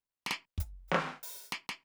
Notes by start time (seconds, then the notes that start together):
0.26 snare
0.31 snare
0.58 open hi-hat, kick
0.88 snare, hi-hat pedal
0.94 snare
1.23 open hi-hat
1.52 snare
1.69 snare